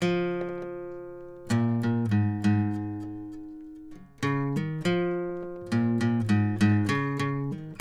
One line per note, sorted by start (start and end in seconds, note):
0.03 1.67 F3
1.51 1.83 A#2
1.83 2.10 A#2
2.12 2.45 G#2
2.45 3.96 G#2
4.23 4.58 C#3
4.58 4.90 D#3
4.86 6.87 F3
5.73 6.02 A#2
6.02 6.26 A#2
6.30 6.58 G#2
6.62 6.92 G#2
6.90 7.21 C#3
7.21 7.53 C#3
7.54 7.77 D#3